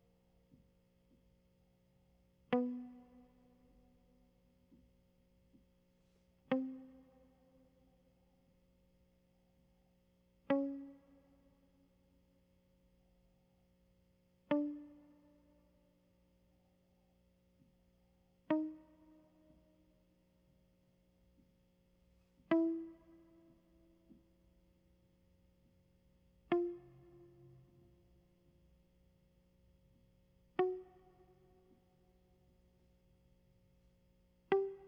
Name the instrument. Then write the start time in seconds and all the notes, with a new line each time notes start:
electric guitar
2.53 B3
6.52 C4
10.51 C#4
14.52 D4
18.51 D#4
22.52 E4
26.52 F4
30.60 F#4
34.52 G4